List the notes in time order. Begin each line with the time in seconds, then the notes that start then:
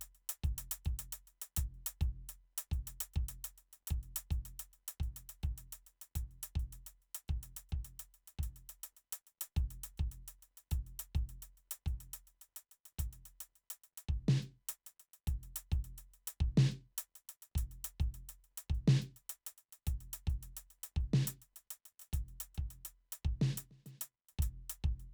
0.01 closed hi-hat
0.15 closed hi-hat
0.29 closed hi-hat
0.43 kick, closed hi-hat
0.58 closed hi-hat
0.71 closed hi-hat
0.85 kick, closed hi-hat
0.99 closed hi-hat
1.12 closed hi-hat
1.27 closed hi-hat
1.41 closed hi-hat
1.56 kick, closed hi-hat
1.74 closed hi-hat
1.86 closed hi-hat
2.01 kick, closed hi-hat
2.29 closed hi-hat
2.58 closed hi-hat
2.71 kick, closed hi-hat
2.87 closed hi-hat
3.00 closed hi-hat
3.13 kick, closed hi-hat
3.28 closed hi-hat
3.44 closed hi-hat
3.57 closed hi-hat
3.73 closed hi-hat
3.87 kick, closed hi-hat
4.03 closed hi-hat
4.16 closed hi-hat
4.30 kick, closed hi-hat
4.45 closed hi-hat
4.59 closed hi-hat
4.73 closed hi-hat
4.88 closed hi-hat
5.00 kick, closed hi-hat
5.16 closed hi-hat
5.29 closed hi-hat
5.43 kick, closed hi-hat
5.57 closed hi-hat
5.72 closed hi-hat
5.86 closed hi-hat
6.01 closed hi-hat
6.15 kick, closed hi-hat
6.31 closed hi-hat
6.43 closed hi-hat
6.55 kick
6.59 closed hi-hat
6.72 closed hi-hat
6.86 closed hi-hat
7.02 closed hi-hat
7.14 closed hi-hat
7.28 kick, closed hi-hat
7.43 closed hi-hat
7.56 closed hi-hat
7.69 kick, closed hi-hat
7.84 closed hi-hat
7.99 closed hi-hat
8.14 closed hi-hat
8.27 closed hi-hat
8.39 kick
8.43 closed hi-hat
8.56 closed hi-hat
8.69 closed hi-hat
8.83 closed hi-hat
8.96 closed hi-hat
9.12 closed hi-hat
9.27 closed hi-hat
9.41 closed hi-hat
9.56 kick, closed hi-hat
9.70 closed hi-hat
9.83 closed hi-hat
9.97 kick, closed hi-hat
10.11 closed hi-hat
10.28 closed hi-hat
10.42 closed hi-hat
10.57 closed hi-hat
10.71 kick, closed hi-hat
10.86 closed hi-hat
10.99 closed hi-hat
11.15 kick, closed hi-hat
11.29 closed hi-hat
11.42 closed hi-hat
11.57 closed hi-hat
11.71 closed hi-hat
11.86 kick, closed hi-hat
12.00 closed hi-hat
12.13 closed hi-hat
12.27 closed hi-hat
12.41 closed hi-hat
12.56 closed hi-hat
12.71 closed hi-hat
12.85 closed hi-hat
12.98 closed hi-hat, kick
13.12 closed hi-hat
13.25 closed hi-hat
13.40 closed hi-hat
13.55 closed hi-hat
13.70 closed hi-hat
13.83 closed hi-hat
13.97 closed hi-hat
14.08 kick
14.14 closed hi-hat
14.28 snare
14.42 closed hi-hat
14.69 closed hi-hat
14.86 closed hi-hat
14.99 closed hi-hat
15.13 closed hi-hat
15.27 kick, closed hi-hat
15.43 closed hi-hat
15.56 closed hi-hat
15.72 kick, closed hi-hat
15.84 closed hi-hat
15.98 closed hi-hat
16.13 closed hi-hat
16.27 closed hi-hat
16.40 kick
16.57 snare
16.71 closed hi-hat
16.98 closed hi-hat
17.15 closed hi-hat
17.29 closed hi-hat
17.42 closed hi-hat
17.55 kick, closed hi-hat
17.71 closed hi-hat
17.84 closed hi-hat
18.00 kick, closed hi-hat
18.14 closed hi-hat
18.29 closed hi-hat
18.44 closed hi-hat
18.57 closed hi-hat
18.70 kick
18.74 closed hi-hat
18.87 snare
19.02 closed hi-hat
19.16 closed hi-hat
19.29 closed hi-hat
19.46 closed hi-hat
19.58 closed hi-hat
19.72 closed hi-hat
19.87 closed hi-hat, kick
20.00 closed hi-hat
20.13 closed hi-hat
20.27 kick, closed hi-hat
20.42 closed hi-hat
20.57 closed hi-hat
20.70 closed hi-hat
20.83 closed hi-hat
20.96 kick
21.00 closed hi-hat
21.13 snare
21.27 closed hi-hat
21.42 closed hi-hat
21.56 closed hi-hat
21.70 closed hi-hat
21.85 closed hi-hat
21.99 closed hi-hat
22.01 closed hi-hat
22.13 closed hi-hat, kick
22.28 closed hi-hat
22.40 closed hi-hat
22.54 kick, closed hi-hat
22.70 closed hi-hat
22.85 closed hi-hat
23.12 closed hi-hat
23.25 kick
23.41 snare
23.57 closed hi-hat
23.71 snare
23.86 snare, closed hi-hat
24.01 closed hi-hat
24.28 closed hi-hat
24.39 closed hi-hat, kick
24.69 closed hi-hat
24.84 kick
24.99 closed hi-hat